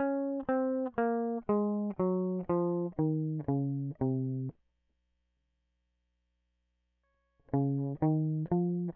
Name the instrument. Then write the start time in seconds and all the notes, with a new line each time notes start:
electric guitar
0.00 C#4
0.49 C4
0.98 A#3
1.50 G#3
2.00 F#3
2.50 F3
3.00 D#3
3.49 C#3
4.02 C3
7.55 C#3
8.03 D#3
8.52 F3